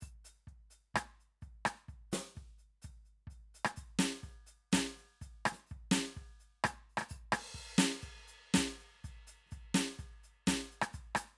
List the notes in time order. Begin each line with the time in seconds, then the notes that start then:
0.00 open hi-hat, kick, hi-hat pedal
0.24 closed hi-hat
0.47 kick, closed hi-hat
0.70 closed hi-hat
0.94 closed hi-hat, kick, cross-stick
1.19 closed hi-hat
1.41 closed hi-hat, kick
1.65 open hi-hat, cross-stick
1.88 closed hi-hat, kick
2.12 closed hi-hat, snare
2.35 closed hi-hat, kick, snare
2.42 snare
2.46 snare
2.58 closed hi-hat
2.82 closed hi-hat, kick
3.05 closed hi-hat
3.27 closed hi-hat, kick
3.54 closed hi-hat
3.65 cross-stick
3.76 closed hi-hat, kick
3.99 closed hi-hat, snare
4.04 snare
4.22 closed hi-hat, kick, snare
4.29 snare
4.46 closed hi-hat
4.72 closed hi-hat, kick, snare
4.77 cross-stick
4.97 closed hi-hat, snare
5.03 snare
5.21 closed hi-hat, kick
5.45 closed hi-hat, cross-stick
5.52 snare
5.66 closed hi-hat, hi-hat pedal
5.71 kick
5.91 closed hi-hat, snare
5.98 snare
6.15 closed hi-hat, kick
6.19 snare
6.39 closed hi-hat
6.64 open hi-hat, kick, cross-stick, hi-hat pedal
6.88 open hi-hat
6.97 cross-stick
7.01 cross-stick
7.08 open hi-hat, kick, hi-hat pedal
7.32 cross-stick, crash
7.53 closed hi-hat, kick, hi-hat pedal
7.78 closed hi-hat, snare
8.01 closed hi-hat, kick
8.17 snare
8.23 snare
8.27 closed hi-hat
8.53 closed hi-hat, kick, snare
8.78 closed hi-hat
8.93 snare
9.03 closed hi-hat, kick
9.27 closed hi-hat
9.46 snare
9.50 closed hi-hat, kick
9.74 closed hi-hat, snare
9.98 closed hi-hat, kick, snare
10.05 snare
10.09 snare
10.23 closed hi-hat
10.46 closed hi-hat, kick, snare
10.54 snare
10.71 closed hi-hat
10.82 cross-stick
10.93 closed hi-hat, kick
11.15 closed hi-hat, cross-stick